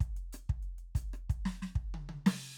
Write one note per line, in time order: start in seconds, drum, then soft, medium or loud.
0.01 kick medium
0.01 closed hi-hat soft
0.17 closed hi-hat soft
0.33 closed hi-hat medium
0.33 cross-stick medium
0.50 kick medium
0.63 closed hi-hat soft
0.79 closed hi-hat soft
0.96 closed hi-hat medium
0.96 kick medium
0.96 cross-stick soft
1.14 cross-stick medium
1.30 kick medium
1.30 closed hi-hat soft
1.46 snare medium
1.63 snare medium
1.76 kick medium
1.95 high tom medium
2.10 high tom medium
2.27 snare loud
2.27 crash medium